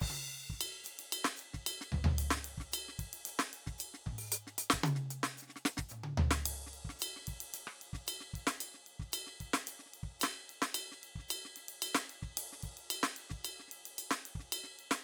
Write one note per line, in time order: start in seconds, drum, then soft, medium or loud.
0.01 kick medium
0.01 crash loud
0.10 kick soft
0.10 high tom soft
0.16 kick soft
0.28 hi-hat pedal soft
0.50 kick soft
0.50 snare soft
0.61 ride bell loud
0.84 hi-hat pedal medium
0.84 ride medium
0.99 snare soft
0.99 ride medium
1.12 ride bell loud
1.25 snare loud
1.36 hi-hat pedal medium
1.36 ride soft
1.54 kick soft
1.54 snare soft
1.67 hi-hat pedal medium
1.67 ride bell loud
1.81 snare medium
1.92 kick soft
1.92 floor tom medium
2.00 kick soft
2.04 floor tom loud
2.18 hi-hat pedal medium
2.18 ride medium
2.31 snare loud
2.36 snare soft
2.45 ride medium
2.58 kick soft
2.58 snare soft
2.72 hi-hat pedal medium
2.72 ride bell loud
2.89 snare soft
2.99 kick soft
2.99 ride medium
3.05 kick soft
3.13 ride medium
3.25 hi-hat pedal medium
3.25 ride medium
3.39 snare loud
3.53 ride medium
3.66 kick soft
3.66 snare soft
3.74 kick soft
3.74 hi-hat pedal medium
3.80 ride bell medium
3.94 snare soft
4.06 kick soft
4.06 mid tom medium
4.13 kick soft
4.18 closed hi-hat medium
4.32 closed hi-hat loud
4.32 hi-hat pedal medium
4.47 snare soft
4.58 closed hi-hat loud
4.70 kick soft
4.70 snare loud
4.84 hi-hat pedal medium
4.84 high tom loud
4.95 snare soft
5.11 closed hi-hat medium
5.23 snare medium
5.36 snare soft
5.36 hi-hat pedal medium
5.42 snare soft
5.47 snare soft
5.49 snare soft
5.56 snare soft
5.65 snare loud
5.77 kick soft
5.77 snare medium
5.89 hi-hat pedal medium
5.89 mid tom soft
6.04 closed hi-hat soft
6.04 high tom medium
6.18 floor tom loud
6.31 snare loud
6.45 hi-hat pedal medium
6.45 ride loud
6.67 snare soft
6.73 ride soft
6.85 kick soft
6.89 snare soft
6.96 snare soft
6.96 hi-hat pedal medium
7.02 ride bell loud
7.16 snare soft
7.22 snare soft
7.26 kick soft
7.26 snare soft
7.26 ride medium
7.33 kick soft
7.41 ride medium
7.53 hi-hat pedal medium
7.53 ride medium
7.67 cross-stick medium
7.81 ride soft
7.93 kick soft
7.93 snare soft
8.07 hi-hat pedal medium
8.07 ride bell loud
8.21 snare soft
8.34 kick soft
8.34 ride soft
8.47 snare loud
8.60 hi-hat pedal medium
8.60 ride bell medium
8.74 snare soft
8.86 ride soft
9.00 kick soft
9.00 snare soft
9.12 hi-hat pedal medium
9.12 ride bell loud
9.27 snare soft
9.40 kick soft
9.40 ride soft
9.54 snare loud
9.67 hi-hat pedal medium
9.67 ride medium
9.79 snare soft
9.86 snare soft
9.94 ride soft
10.03 kick soft
10.20 snare medium
10.20 hi-hat pedal medium
10.20 ride bell loud
10.49 ride soft
10.62 snare loud
10.75 hi-hat pedal medium
10.75 ride bell loud
10.92 snare soft
11.03 ride soft
11.16 kick soft
11.16 snare soft
11.28 kick soft
11.28 hi-hat pedal medium
11.28 ride bell loud
11.45 snare soft
11.56 snare soft
11.56 ride medium
11.69 ride medium
11.82 hi-hat pedal medium
11.82 ride bell loud
11.95 snare loud
12.10 ride soft
12.22 kick soft
12.22 snare soft
12.37 hi-hat pedal medium
12.37 ride loud
12.53 snare soft
12.60 kick soft
12.60 snare soft
12.60 ride soft
12.77 ride soft
12.90 hi-hat pedal medium
12.90 ride bell loud
13.03 snare loud
13.16 ride medium
13.30 kick soft
13.30 snare soft
13.44 hi-hat pedal medium
13.44 ride bell loud
13.60 snare soft
13.68 snare soft
13.68 ride medium
13.86 ride medium
13.98 hi-hat pedal soft
13.98 ride bell medium
14.11 snare loud
14.25 ride medium
14.35 kick soft
14.40 snare soft
14.52 hi-hat pedal medium
14.52 ride bell loud
14.64 snare soft
14.79 ride soft
14.91 snare loud